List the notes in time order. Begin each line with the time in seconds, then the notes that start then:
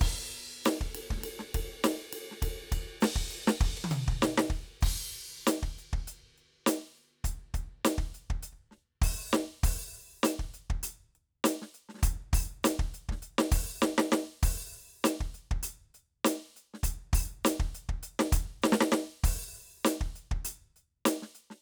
0.01 kick, hi-hat pedal, crash
0.47 kick
0.64 snare, hi-hat pedal, ride
0.81 kick
0.95 hi-hat pedal, ride
1.10 kick, snare
1.16 snare
1.20 snare
1.23 snare, hi-hat pedal, ride
1.39 snare
1.54 kick, ride
1.83 snare, hi-hat pedal, ride
2.13 ride
2.31 snare
2.42 kick, hi-hat pedal, ride
2.72 kick, ride bell
3.01 snare, hi-hat pedal, ride
3.16 kick
3.30 hi-hat pedal, ride
3.48 snare
3.60 kick, ride
3.77 percussion
3.84 high tom
3.90 hi-hat pedal, mid tom
4.08 kick
4.22 snare, hi-hat pedal
4.38 snare
4.50 kick
4.81 kick, hi-hat pedal, crash
5.38 kick
5.47 closed hi-hat, snare
5.63 kick
5.78 closed hi-hat
5.93 kick
6.07 closed hi-hat
6.38 closed hi-hat
6.67 closed hi-hat, snare
6.97 closed hi-hat
7.24 closed hi-hat, kick
7.54 closed hi-hat, kick
7.85 closed hi-hat, snare
7.98 kick
8.14 closed hi-hat
8.30 kick
8.43 closed hi-hat
8.52 kick
8.71 snare
9.02 open hi-hat, kick
9.32 snare, hi-hat pedal
9.63 open hi-hat, kick
10.13 kick
10.23 open hi-hat, snare, hi-hat pedal
10.39 kick
10.54 closed hi-hat
10.70 kick
10.83 closed hi-hat
11.15 closed hi-hat
11.44 closed hi-hat, snare
11.62 snare
11.74 closed hi-hat
11.89 snare
11.94 snare
11.98 snare
12.01 closed hi-hat, kick, snare
12.33 open hi-hat, kick
12.63 closed hi-hat, snare, hi-hat pedal
12.79 kick
12.94 closed hi-hat
13.09 kick, snare
13.22 closed hi-hat
13.38 snare
13.52 open hi-hat, kick
13.82 snare, hi-hat pedal
13.98 snare
14.12 snare
14.43 open hi-hat, kick
15.04 open hi-hat, snare, hi-hat pedal
15.21 kick
15.34 closed hi-hat
15.51 kick
15.63 closed hi-hat
15.94 closed hi-hat
16.25 closed hi-hat, snare
16.56 closed hi-hat
16.74 snare
16.83 closed hi-hat, kick
17.13 open hi-hat, kick
17.44 closed hi-hat, snare, hi-hat pedal
17.60 kick
17.75 closed hi-hat
17.89 kick
18.03 closed hi-hat
18.19 snare
18.32 open hi-hat, kick
18.62 snare, hi-hat pedal
18.72 snare
18.81 snare
18.92 snare
19.24 open hi-hat, kick
19.77 kick
19.85 open hi-hat, snare, hi-hat pedal
20.01 kick
20.16 closed hi-hat
20.31 kick
20.45 closed hi-hat
20.76 closed hi-hat
21.05 closed hi-hat, snare
21.22 snare
21.35 closed hi-hat
21.50 snare